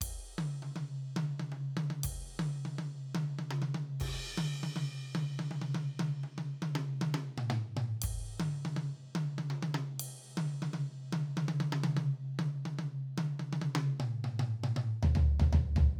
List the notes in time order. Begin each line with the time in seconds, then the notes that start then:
0.01 kick, ride
0.38 high tom
0.62 high tom
0.76 high tom
1.16 high tom
1.39 high tom
1.52 high tom
1.77 high tom
1.90 high tom
2.03 kick, ride
2.39 high tom
2.65 high tom
2.78 high tom
3.14 high tom
3.38 high tom
3.50 high tom
3.62 high tom
3.74 high tom
4.00 kick, ride
4.37 high tom
4.63 high tom
4.76 high tom
5.15 high tom
5.39 high tom
5.51 high tom
5.61 open hi-hat, high tom
5.74 high tom
5.99 high tom
6.23 high tom
6.38 high tom
6.62 high tom
6.75 high tom
7.01 high tom
7.14 high tom
7.38 mid tom
7.50 mid tom
7.76 mid tom
8.02 kick, ride
8.39 high tom
8.65 high tom
8.76 high tom
9.15 high tom
9.38 high tom
9.50 high tom
9.62 high tom
9.74 high tom
9.99 ride
10.37 high tom
10.62 high tom
10.73 high tom
11.12 high tom
11.37 high tom
11.48 high tom
11.60 high tom
11.72 high tom
11.83 high tom
11.96 high tom
12.39 high tom
12.65 high tom
12.78 high tom
13.17 high tom
13.39 high tom
13.53 high tom
13.61 high tom
13.75 high tom
14.00 mid tom
14.24 mid tom
14.39 mid tom
14.63 mid tom
14.76 mid tom
15.03 floor tom
15.15 floor tom
15.39 floor tom
15.53 floor tom
15.76 floor tom